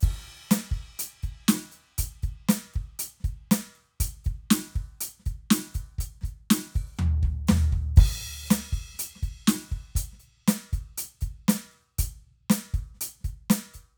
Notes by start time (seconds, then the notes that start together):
0.02 kick, hi-hat pedal, crash
0.52 closed hi-hat, snare
0.57 snare
0.72 kick, closed hi-hat
1.00 closed hi-hat
1.24 closed hi-hat, kick
1.49 closed hi-hat, snare
1.55 snare
1.73 closed hi-hat
1.99 closed hi-hat, kick
2.24 closed hi-hat, kick
2.50 closed hi-hat, snare
2.75 kick, closed hi-hat
3.00 closed hi-hat
3.21 snare
3.25 closed hi-hat, kick
3.52 closed hi-hat, snare
3.76 closed hi-hat
4.01 closed hi-hat, kick
4.26 closed hi-hat, kick
4.52 closed hi-hat, snare
4.77 kick, closed hi-hat
5.02 closed hi-hat
5.20 snare
5.27 closed hi-hat, kick
5.52 closed hi-hat, snare
5.75 closed hi-hat, kick
5.99 closed hi-hat, kick
6.22 closed hi-hat, kick, snare
6.51 closed hi-hat, snare
6.76 open hi-hat, kick
7.00 floor tom
7.24 kick, floor tom
7.48 snare, floor tom, hi-hat pedal
7.73 kick, floor tom
7.97 kick, hi-hat pedal, crash
8.46 hi-hat pedal
8.52 closed hi-hat, snare
8.74 closed hi-hat, kick
8.95 snare
9.00 closed hi-hat
9.17 snare
9.24 closed hi-hat, kick
9.49 closed hi-hat, snare
9.73 kick, closed hi-hat
9.96 closed hi-hat, kick
10.13 snare
10.21 closed hi-hat
10.49 closed hi-hat, snare
10.74 closed hi-hat, kick
10.99 closed hi-hat
11.22 closed hi-hat, kick
11.49 closed hi-hat, snare
11.56 snare
11.73 closed hi-hat
12.00 closed hi-hat, kick
12.51 closed hi-hat, snare
12.75 closed hi-hat, kick
12.96 snare
13.02 closed hi-hat
13.21 closed hi-hat, kick, snare
13.51 closed hi-hat, snare
13.75 closed hi-hat, kick